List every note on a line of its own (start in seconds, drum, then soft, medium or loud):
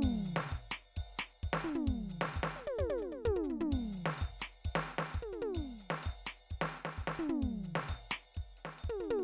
0.01 kick soft
0.01 ride loud
0.01 floor tom soft
0.13 kick soft
0.25 hi-hat pedal loud
0.25 ride soft
0.37 snare medium
0.45 hi-hat pedal soft
0.45 ride bell medium
0.52 kick soft
0.71 snare medium
0.71 hi-hat pedal loud
0.91 hi-hat pedal soft
0.97 kick soft
0.97 ride medium
1.17 snare loud
1.17 hi-hat pedal medium
1.37 hi-hat pedal soft
1.43 kick soft
1.43 ride medium
1.53 snare medium
1.61 floor tom medium
1.61 hi-hat pedal medium
1.75 floor tom medium
1.88 kick medium
1.88 ride medium
2.09 hi-hat pedal medium
2.09 ride soft
2.22 snare medium
2.30 hi-hat pedal soft
2.30 ride medium
2.36 kick soft
2.44 snare medium
2.55 hi-hat pedal medium
2.55 high tom soft
2.67 high tom medium
2.79 kick soft
2.79 high tom medium
2.87 kick soft
2.87 high tom medium
2.98 hi-hat pedal loud
2.98 high tom soft
3.12 high tom medium
3.25 kick soft
3.25 mid tom loud
3.35 kick soft
3.35 mid tom medium
3.44 hi-hat pedal loud
3.50 floor tom medium
3.60 floor tom medium
3.70 kick soft
3.70 ride medium
3.70 floor tom soft
3.81 kick soft
3.92 hi-hat pedal loud
3.97 ride soft
4.06 snare medium
4.14 hi-hat pedal soft
4.18 kick soft
4.18 ride medium
4.28 kick soft
4.30 kick soft
4.39 snare medium
4.39 hi-hat pedal loud
4.60 hi-hat pedal soft
4.65 kick soft
4.65 ride medium
4.76 snare medium
4.86 hi-hat pedal loud
4.86 ride soft
4.99 snare medium
5.08 hi-hat pedal soft
5.08 ride medium
5.15 kick soft
5.22 mid tom medium
5.32 hi-hat pedal medium
5.32 mid tom medium
5.42 mid tom medium
5.54 kick soft
5.54 hi-hat pedal soft
5.54 ride bell medium
5.79 hi-hat pedal medium
5.79 ride soft
5.90 snare medium
6.00 hi-hat pedal soft
6.00 ride medium
6.06 kick soft
6.26 snare medium
6.26 hi-hat pedal medium
6.46 hi-hat pedal soft
6.51 kick soft
6.51 ride bell soft
6.62 snare medium
6.72 hi-hat pedal medium
6.72 ride soft
6.85 snare medium
6.93 hi-hat pedal soft
6.97 kick soft
6.97 ride bell soft
7.08 snare medium
7.17 floor tom medium
7.17 hi-hat pedal medium
7.29 floor tom medium
7.42 kick soft
7.42 ride bell medium
7.49 kick soft
7.51 kick soft
7.64 hi-hat pedal medium
7.64 ride soft
7.76 snare medium
7.89 kick soft
7.89 ride medium
8.10 snare loud
8.10 hi-hat pedal medium
8.35 kick soft
8.35 ride medium
8.57 hi-hat pedal medium
8.57 ride soft
8.65 snare soft
8.79 ride bell medium
8.84 kick soft
8.89 mid tom medium
9.00 hi-hat pedal medium
9.00 mid tom medium
9.10 mid tom loud
9.19 mid tom soft